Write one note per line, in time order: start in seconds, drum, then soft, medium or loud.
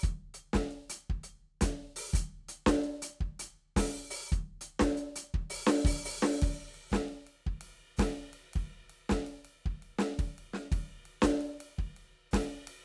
0.02 closed hi-hat medium
0.02 kick medium
0.02 hi-hat pedal soft
0.35 closed hi-hat medium
0.54 kick medium
0.54 snare loud
0.71 closed hi-hat soft
0.90 closed hi-hat loud
1.10 kick medium
1.24 closed hi-hat medium
1.62 closed hi-hat loud
1.62 kick medium
1.62 snare loud
1.97 open hi-hat loud
2.12 closed hi-hat loud
2.12 kick medium
2.12 hi-hat pedal soft
2.49 closed hi-hat loud
2.67 kick medium
2.67 snare loud
2.84 closed hi-hat medium
3.03 closed hi-hat loud
3.21 kick medium
3.40 closed hi-hat loud
3.77 open hi-hat loud
3.77 kick medium
3.77 snare loud
4.11 open hi-hat loud
4.30 closed hi-hat medium
4.30 kick medium
4.30 hi-hat pedal medium
4.62 closed hi-hat loud
4.80 kick medium
4.80 snare loud
4.98 closed hi-hat medium
5.16 closed hi-hat loud
5.35 kick medium
5.51 open hi-hat loud
5.67 snare loud
5.85 open hi-hat loud
5.85 kick loud
6.06 open hi-hat loud
6.23 snare loud
6.42 kick loud
6.42 ride medium
6.75 ride soft
6.91 kick medium
6.91 snare loud
6.91 hi-hat pedal medium
7.09 ride soft
7.27 ride soft
7.47 kick medium
7.62 ride medium
7.98 kick medium
7.98 snare loud
7.98 hi-hat pedal medium
7.98 ride loud
8.34 ride medium
8.54 kick medium
8.54 ride medium
8.80 ride soft
8.90 ride medium
9.10 kick medium
9.10 snare loud
9.10 hi-hat pedal medium
9.27 ride medium
9.45 ride medium
9.62 ride soft
9.66 kick medium
9.70 ride soft
9.83 ride soft
9.99 snare loud
10.19 kick medium
10.19 ride medium
10.39 ride medium
10.54 snare medium
10.72 kick medium
10.72 ride medium
11.06 ride medium
11.22 kick medium
11.22 snare loud
11.22 hi-hat pedal soft
11.42 ride medium
11.61 ride medium
11.79 kick medium
11.83 ride soft
11.97 ride soft
12.32 kick medium
12.32 snare loud
12.32 hi-hat pedal medium
12.32 ride loud
12.68 ride medium